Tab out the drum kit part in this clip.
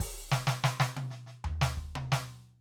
Hi-hat    |o---------------|
Snare     |--oooo-og-o--o--|
High tom  |------o-----o---|
Floor tom |---------o------|
Kick      |o----------o----|